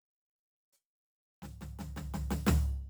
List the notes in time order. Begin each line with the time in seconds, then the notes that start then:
0.73 hi-hat pedal
1.42 snare, floor tom
1.61 snare, floor tom
1.79 snare, floor tom
1.96 snare, floor tom
2.14 snare, floor tom
2.31 snare, floor tom
2.47 snare, floor tom